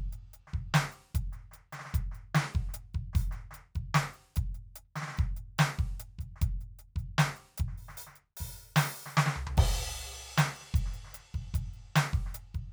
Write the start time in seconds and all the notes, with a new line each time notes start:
0.13 closed hi-hat
0.34 closed hi-hat
0.48 snare
0.54 kick
0.74 closed hi-hat, snare
0.93 closed hi-hat
1.15 closed hi-hat, kick
1.33 snare, closed hi-hat
1.52 closed hi-hat, snare
1.73 snare, closed hi-hat
1.80 snare
1.86 snare
1.91 kick, snare, closed hi-hat
2.12 snare, closed hi-hat
2.35 closed hi-hat, snare
2.54 kick, closed hi-hat
2.69 snare
2.74 closed hi-hat
2.94 kick, closed hi-hat
3.14 open hi-hat, kick, snare
3.32 closed hi-hat, snare
3.51 closed hi-hat, snare
3.76 kick, closed hi-hat
3.95 closed hi-hat, snare
4.14 closed hi-hat
4.36 closed hi-hat, kick
4.55 closed hi-hat
4.76 closed hi-hat
4.96 snare, closed hi-hat
5.02 snare
5.08 snare
5.14 snare, closed hi-hat
5.19 kick
5.37 closed hi-hat
5.59 closed hi-hat, snare
5.79 kick, closed hi-hat
6.00 closed hi-hat
6.19 kick, closed hi-hat
6.36 snare
6.42 closed hi-hat, kick
6.61 closed hi-hat
6.79 closed hi-hat
6.96 kick, closed hi-hat
7.19 closed hi-hat, snare
7.37 closed hi-hat
7.49 snare
7.58 closed hi-hat, kick
7.69 snare
7.78 open hi-hat
7.89 snare
7.97 open hi-hat, hi-hat pedal
8.07 snare
8.16 closed hi-hat
8.37 open hi-hat, kick
8.57 open hi-hat
8.77 open hi-hat, snare
8.95 open hi-hat
9.06 snare
9.15 snare, hi-hat pedal
9.27 snare
9.36 floor tom
9.47 floor tom
9.58 kick, crash
10.02 open hi-hat
10.38 closed hi-hat, snare, hi-hat pedal
10.56 closed hi-hat
10.61 snare
10.75 closed hi-hat, kick
10.86 snare
10.91 snare, closed hi-hat
11.05 snare
11.08 snare
11.12 snare
11.14 closed hi-hat, snare
11.18 snare
11.35 kick, closed hi-hat
11.54 closed hi-hat, kick
11.74 closed hi-hat
11.96 closed hi-hat, snare
12.14 kick, open hi-hat
12.27 snare
12.35 closed hi-hat
12.55 kick, closed hi-hat